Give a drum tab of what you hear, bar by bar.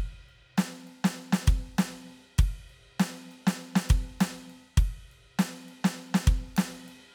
RD |--x-b-x---b-x-x-|x-x-x-b---b-b-x-|x-x-x-x---x-x-x-|
SD |----o--o-o--o---|----o--o-o--o---|----o--o-og-o---|
BD |----------o-----|o---------o-----|o---------o-----|